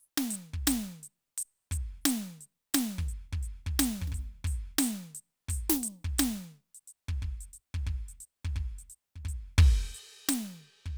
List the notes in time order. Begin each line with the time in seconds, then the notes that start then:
0.00 hi-hat pedal
0.17 snare
0.30 closed hi-hat
0.53 kick
0.67 closed hi-hat, snare
1.03 closed hi-hat
1.38 closed hi-hat
1.71 closed hi-hat, kick
2.01 hi-hat pedal
2.05 closed hi-hat, snare
2.41 closed hi-hat
2.74 closed hi-hat, snare
2.97 kick, hi-hat pedal
3.08 closed hi-hat
3.32 kick
3.43 closed hi-hat
3.66 kick
3.79 closed hi-hat, snare
4.01 kick
4.07 snare
4.12 open hi-hat, kick
4.19 snare
4.44 open hi-hat, kick, hi-hat pedal
4.78 open hi-hat, snare, hi-hat pedal
5.15 closed hi-hat
5.48 open hi-hat, kick
5.53 hi-hat pedal
5.70 snare
5.83 closed hi-hat
6.04 kick
6.18 closed hi-hat, snare
6.74 closed hi-hat
6.87 closed hi-hat
7.08 kick
7.22 kick
7.40 closed hi-hat
7.53 closed hi-hat
7.74 kick
7.86 kick
8.08 closed hi-hat
8.20 closed hi-hat
8.45 kick
8.56 kick
8.78 closed hi-hat
8.90 closed hi-hat
9.16 kick
9.25 closed hi-hat, kick
9.58 kick, crash
9.94 closed hi-hat
10.29 closed hi-hat, snare
10.63 closed hi-hat
10.86 kick